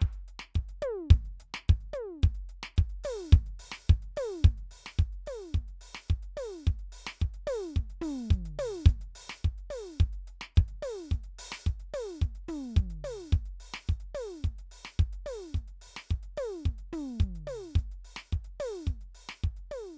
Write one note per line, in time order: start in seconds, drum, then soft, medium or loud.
0.01 kick medium
0.01 snare soft
0.01 closed hi-hat soft
0.13 closed hi-hat soft
0.28 closed hi-hat medium
0.40 snare medium
0.55 kick medium
0.55 closed hi-hat medium
0.69 closed hi-hat soft
0.82 kick soft
0.82 closed hi-hat medium
0.82 high tom loud
1.11 kick loud
1.11 closed hi-hat soft
1.25 closed hi-hat soft
1.40 kick soft
1.40 closed hi-hat medium
1.54 snare loud
1.69 kick loud
1.69 closed hi-hat soft
1.81 closed hi-hat soft
1.93 kick soft
1.93 closed hi-hat medium
1.93 high tom loud
2.23 kick loud
2.23 closed hi-hat soft
2.35 closed hi-hat soft
2.49 closed hi-hat medium
2.63 snare medium
2.77 kick medium
2.77 closed hi-hat soft
2.90 closed hi-hat soft
3.04 open hi-hat medium
3.04 high tom loud
3.31 kick loud
3.31 closed hi-hat soft
3.31 hi-hat pedal soft
3.46 closed hi-hat soft
3.60 open hi-hat medium
3.72 snare medium
3.87 kick loud
3.87 closed hi-hat soft
3.87 hi-hat pedal soft
4.02 closed hi-hat soft
4.17 open hi-hat medium
4.17 high tom loud
4.42 kick loud
4.42 closed hi-hat soft
4.42 hi-hat pedal soft
4.58 closed hi-hat soft
4.71 open hi-hat medium
4.86 snare medium
4.97 kick medium
4.97 closed hi-hat soft
4.97 hi-hat pedal soft
5.13 closed hi-hat soft
5.27 open hi-hat medium
5.27 high tom medium
5.54 kick medium
5.54 closed hi-hat soft
5.54 hi-hat pedal soft
5.68 closed hi-hat soft
5.81 open hi-hat medium
5.95 snare medium
6.08 kick medium
6.08 closed hi-hat soft
6.08 hi-hat pedal soft
6.23 closed hi-hat soft
6.37 open hi-hat medium
6.37 high tom loud
6.64 kick medium
6.64 closed hi-hat soft
6.64 hi-hat pedal soft
6.79 closed hi-hat soft
6.92 open hi-hat medium
7.07 snare medium
7.20 kick medium
7.20 closed hi-hat medium
7.20 hi-hat pedal soft
7.34 closed hi-hat soft
7.47 open hi-hat medium
7.47 high tom loud
7.74 kick medium
7.74 closed hi-hat soft
7.74 hi-hat pedal soft
7.90 closed hi-hat soft
8.01 floor tom loud
8.01 open hi-hat medium
8.28 kick medium
8.28 hi-hat pedal soft
8.33 closed hi-hat medium
8.46 closed hi-hat medium
8.59 open hi-hat medium
8.59 high tom loud
8.84 kick loud
8.84 hi-hat pedal soft
8.89 closed hi-hat medium
9.01 closed hi-hat soft
9.16 open hi-hat medium
9.30 snare medium
9.40 hi-hat pedal soft
9.44 kick medium
9.44 closed hi-hat soft
9.58 closed hi-hat soft
9.70 open hi-hat medium
9.70 high tom medium
9.97 kick medium
9.97 closed hi-hat soft
9.97 hi-hat pedal soft
10.13 closed hi-hat soft
10.28 open hi-hat medium
10.41 snare medium
10.55 kick loud
10.55 closed hi-hat soft
10.55 hi-hat pedal soft
10.68 closed hi-hat soft
10.82 open hi-hat medium
10.82 high tom loud
11.09 kick medium
11.09 hi-hat pedal soft
11.13 closed hi-hat soft
11.24 closed hi-hat soft
11.39 open hi-hat loud
11.52 snare medium
11.63 kick medium
11.63 closed hi-hat medium
11.63 hi-hat pedal soft
11.80 closed hi-hat soft
11.94 open hi-hat medium
11.94 high tom loud
12.18 kick medium
12.18 hi-hat pedal soft
12.23 closed hi-hat medium
12.35 closed hi-hat soft
12.48 floor tom medium
12.48 open hi-hat medium
12.75 kick medium
12.75 closed hi-hat medium
12.75 hi-hat pedal soft
12.90 closed hi-hat medium
13.04 open hi-hat medium
13.04 high tom medium
13.31 kick medium
13.31 closed hi-hat soft
13.31 hi-hat pedal soft
13.46 closed hi-hat soft
13.60 open hi-hat medium
13.74 snare medium
13.86 kick medium
13.86 hi-hat pedal soft
13.86 open hi-hat soft
14.00 closed hi-hat soft
14.15 open hi-hat medium
14.15 high tom loud
14.41 kick medium
14.41 closed hi-hat medium
14.41 hi-hat pedal soft
14.59 closed hi-hat soft
14.72 open hi-hat medium
14.85 snare medium
14.96 kick medium
14.96 closed hi-hat medium
14.96 hi-hat pedal soft
15.13 closed hi-hat soft
15.26 open hi-hat medium
15.26 high tom medium
15.52 kick medium
15.52 hi-hat pedal soft
15.57 closed hi-hat soft
15.68 closed hi-hat soft
15.82 open hi-hat medium
15.87 kick soft
15.97 snare medium
16.09 kick medium
16.09 closed hi-hat medium
16.09 hi-hat pedal soft
16.23 closed hi-hat soft
16.37 open hi-hat medium
16.37 high tom loud
16.63 kick medium
16.63 closed hi-hat medium
16.63 hi-hat pedal soft
16.78 closed hi-hat soft
16.92 floor tom medium
16.92 open hi-hat medium
17.19 kick medium
17.19 closed hi-hat medium
17.19 hi-hat pedal soft
17.35 closed hi-hat soft
17.47 open hi-hat medium
17.47 high tom medium
17.75 kick medium
17.75 hi-hat pedal soft
17.79 closed hi-hat medium
17.92 closed hi-hat soft
18.05 open hi-hat medium
18.17 snare medium
18.30 kick medium
18.30 closed hi-hat soft
18.30 hi-hat pedal soft
18.45 closed hi-hat soft
18.60 open hi-hat medium
18.60 high tom loud
18.86 kick medium
18.86 closed hi-hat soft
18.86 hi-hat pedal soft
19.01 closed hi-hat soft
19.15 open hi-hat medium
19.29 snare medium
19.41 closed hi-hat soft
19.41 kick medium
19.41 hi-hat pedal soft
19.57 closed hi-hat soft
19.71 open hi-hat medium
19.71 high tom medium